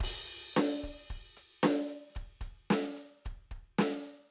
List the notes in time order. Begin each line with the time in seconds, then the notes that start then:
0.01 kick, crash
0.54 closed hi-hat, snare, hi-hat pedal
0.84 kick, closed hi-hat
1.10 kick, closed hi-hat
1.37 closed hi-hat
1.64 snare
1.68 snare
1.89 closed hi-hat
2.10 snare
2.16 closed hi-hat, kick
2.41 closed hi-hat, kick
2.71 snare
2.97 closed hi-hat
3.26 closed hi-hat, kick
3.52 kick, closed hi-hat
3.79 snare
4.05 closed hi-hat